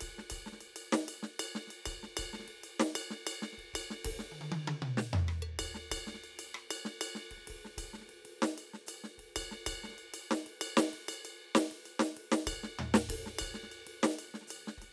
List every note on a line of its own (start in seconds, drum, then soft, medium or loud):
0.01 kick soft
0.01 ride bell medium
0.07 kick soft
0.19 snare soft
0.30 kick soft
0.30 ride bell loud
0.46 snare soft
0.53 snare soft
0.57 snare soft
0.57 ride bell medium
0.62 snare soft
0.76 ride bell medium
0.93 snare loud
0.93 hi-hat pedal medium
1.08 ride bell medium
1.23 snare medium
1.40 hi-hat pedal medium
1.40 ride bell loud
1.55 snare medium
1.67 snare soft
1.67 ride bell medium
1.86 kick soft
1.86 ride bell loud
1.93 kick soft
2.03 snare soft
2.17 kick soft
2.17 ride bell loud
2.33 snare soft
2.40 snare soft
2.44 snare soft
2.48 snare soft
2.48 ride medium
2.52 snare soft
2.64 ride bell medium
2.80 snare loud
2.96 ride bell loud
3.11 snare soft
3.27 hi-hat pedal medium
3.27 ride bell loud
3.42 snare medium
3.53 snare soft
3.58 kick soft
3.58 ride soft
3.74 kick soft
3.74 ride bell loud
3.91 snare soft
4.05 kick soft
4.05 ride loud
4.13 kick soft
4.19 snare soft
4.32 high tom medium
4.41 high tom medium
4.52 high tom loud
4.68 high tom medium
4.82 mid tom loud
4.98 snare medium
5.09 hi-hat pedal soft
5.13 floor tom loud
5.29 cross-stick medium
5.37 hi-hat pedal soft
5.42 percussion medium
5.59 kick soft
5.59 ride bell loud
5.65 kick soft
5.75 snare soft
5.92 kick soft
5.92 ride bell loud
6.07 snare soft
6.15 snare soft
6.24 ride bell soft
6.39 ride bell medium
6.55 cross-stick medium
6.71 ride bell loud
6.85 snare medium
7.01 hi-hat pedal medium
7.01 ride bell loud
7.15 snare soft
7.31 kick soft
7.31 ride medium
7.37 snare soft
7.48 kick soft
7.48 ride medium
7.65 snare soft
7.78 kick soft
7.78 ride bell medium
7.94 snare soft
7.98 snare soft
8.01 snare soft
8.08 snare soft
8.08 ride medium
8.25 ride medium
8.42 snare loud
8.58 ride bell medium
8.74 snare soft
8.87 hi-hat pedal medium
8.87 ride bell medium
9.04 snare soft
9.15 kick soft
9.15 snare soft
9.20 ride medium
9.36 kick soft
9.36 ride bell loud
9.42 kick soft
9.52 snare soft
9.67 kick soft
9.67 ride bell loud
9.73 kick soft
9.84 snare soft
9.89 snare soft
9.92 snare soft
9.98 ride bell soft
10.14 ride bell medium
10.26 hi-hat pedal soft
10.31 snare medium
10.47 ride medium
10.62 ride bell loud
10.77 snare loud
10.94 ride medium
11.09 hi-hat pedal medium
11.09 ride bell loud
11.25 ride bell medium
11.55 snare loud
11.63 hi-hat pedal soft
11.72 ride medium
11.86 ride bell medium
12.00 snare loud
12.14 hi-hat pedal soft
12.14 ride medium
12.32 snare loud
12.47 kick soft
12.47 ride bell loud
12.54 kick soft
12.64 snare soft
12.79 floor tom medium
12.94 snare loud
13.09 kick soft
13.09 hi-hat pedal medium
13.09 ride loud
13.16 kick soft
13.26 snare soft
13.39 kick soft
13.39 ride bell loud
13.54 snare soft
13.63 snare soft
13.72 ride bell soft
13.87 ride medium
14.03 snare loud
14.10 hi-hat pedal medium
14.19 ride bell medium
14.34 snare soft
14.42 snare soft
14.48 hi-hat pedal medium
14.48 ride bell medium
14.68 snare soft
14.78 kick soft
14.78 snare soft
14.82 ride bell soft